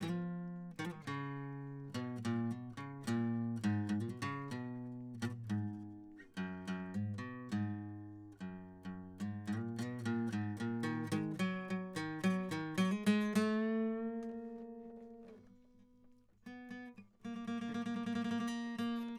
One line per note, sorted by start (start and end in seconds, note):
0.03 0.75 F3
0.80 0.89 D#3
0.91 1.02 D#3
1.03 1.10 C#3
1.11 2.03 C#3
1.95 2.23 B2
2.26 2.52 A#2
2.52 2.74 B2
2.78 3.07 C#3
3.08 3.60 A#2
3.64 3.89 G#2
3.90 3.98 G#2
4.01 4.10 A#2
4.11 4.22 B2
4.22 4.62 C#3
4.52 5.18 B2
5.23 5.32 B2
5.32 5.48 A#2
5.50 6.23 G#2
6.38 6.68 F#2
6.69 6.95 F#2
6.96 7.19 G#2
7.19 7.26 B2
7.26 7.52 B2
7.53 8.36 G#2
8.41 8.85 F#2
8.86 9.19 F#2
9.21 9.47 G#2
9.48 9.58 A2
9.58 9.79 A#2
9.80 10.05 B2
10.29 10.56 G#2
10.58 11.10 A#2
10.84 11.11 D#3
11.12 11.39 D#3
11.12 11.35 G#3
11.40 11.70 F#3
11.71 11.97 F#3
11.97 12.29 D#3
11.97 12.22 D#3
12.24 12.65 F#3
12.52 12.82 D#3
12.78 12.92 F#3
12.92 13.07 G#3
13.07 13.36 G#3
13.36 13.49 A3
13.36 15.38 A#3
16.47 16.71 B3
16.72 16.95 B3
17.25 17.37 A#3
17.38 17.49 A#3
17.49 17.61 A#3
17.63 17.75 A#3
17.76 17.85 A#3
17.87 17.96 A#3
17.97 18.08 A#3
18.08 18.15 A#3
18.17 18.26 A#3
18.26 18.38 A#3
18.39 18.48 A#3
18.48 18.77 A#3
18.80 19.18 A#3